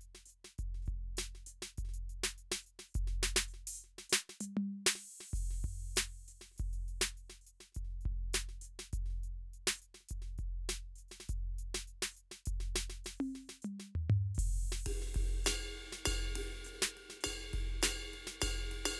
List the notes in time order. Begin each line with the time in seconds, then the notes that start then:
0.01 closed hi-hat
0.15 snare
0.26 closed hi-hat, hi-hat pedal
0.45 snare
0.58 closed hi-hat, kick
0.75 snare
0.82 snare, closed hi-hat, hi-hat pedal
0.88 kick
0.94 kick
0.97 kick
1.17 closed hi-hat, snare
1.35 snare
1.47 closed hi-hat, hi-hat pedal
1.62 snare
1.78 closed hi-hat, kick
1.85 snare
1.89 snare
1.94 closed hi-hat
2.10 closed hi-hat
2.24 snare
2.38 closed hi-hat
2.52 snare
2.61 hi-hat pedal
2.66 closed hi-hat
2.79 snare
2.89 hi-hat pedal
2.95 closed hi-hat, kick
3.02 kick
3.05 kick, snare
3.23 snare
3.36 snare
3.48 hi-hat pedal
3.54 snare
3.67 open hi-hat
3.75 hi-hat pedal
3.84 snare
3.98 snare
4.10 snare, hi-hat pedal
4.29 snare
4.41 hi-hat pedal, mid tom
4.57 mid tom
4.87 snare, crash
4.95 snare
5.21 snare
5.34 closed hi-hat, kick
5.40 kick
5.43 kick
5.51 snare
5.54 snare
5.59 snare, closed hi-hat
5.64 kick
5.96 closed hi-hat, snare
6.28 open hi-hat, hi-hat pedal
6.41 snare
6.52 snare, hi-hat pedal
6.56 closed hi-hat, kick, snare
6.73 closed hi-hat
6.88 closed hi-hat
7.01 snare
7.17 closed hi-hat
7.30 snare
7.41 hi-hat pedal
7.47 closed hi-hat
7.61 snare
7.72 closed hi-hat, snare
7.77 kick
7.85 snare
7.90 snare
8.01 closed hi-hat
8.06 kick
8.12 kick
8.15 kick
8.34 closed hi-hat, snare
8.49 snare
8.62 closed hi-hat, hi-hat pedal
8.79 snare
8.93 closed hi-hat, kick
9.02 kick, snare
9.10 snare
9.16 snare
9.24 closed hi-hat
9.54 closed hi-hat
9.67 snare
9.75 hi-hat pedal
9.82 closed hi-hat
9.95 snare
10.01 snare
10.09 closed hi-hat, kick
10.22 snare
10.27 snare
10.38 kick, closed hi-hat
10.69 closed hi-hat, snare
10.96 closed hi-hat, hi-hat pedal
11.12 snare
11.20 snare
11.29 closed hi-hat, kick
11.38 kick
11.59 closed hi-hat
11.75 snare
11.87 closed hi-hat
12.02 snare
12.12 hi-hat pedal
12.17 closed hi-hat
12.32 snare
12.46 closed hi-hat, kick
12.60 snare
12.76 snare
12.90 snare
13.05 snare, hi-hat pedal
13.20 high tom
13.35 snare
13.49 snare
13.62 hi-hat pedal, mid tom
13.80 snare
13.95 floor tom
14.10 floor tom
14.35 kick, hi-hat pedal
14.39 crash
14.46 kick
14.49 kick
14.60 kick
14.72 snare
14.86 kick, ride
15.02 snare
15.07 snare
15.15 kick, snare, ride
15.26 kick
15.45 snare, hi-hat pedal, ride bell
15.74 hi-hat pedal, ride
15.93 snare
16.05 kick, snare, hi-hat pedal, ride bell
16.16 kick
16.22 snare
16.36 ride
16.65 hi-hat pedal, ride
16.82 snare
16.97 ride
17.10 snare
17.21 hi-hat pedal, ride bell
17.26 kick
17.39 snare
17.44 snare
17.53 kick, ride
17.63 kick
17.82 snare, hi-hat pedal, ride bell
17.97 snare
18.14 ride
18.27 snare
18.41 kick, hi-hat pedal, ride bell
18.51 snare
18.56 snare
18.59 snare
18.72 ride
18.86 ride bell
18.95 hi-hat pedal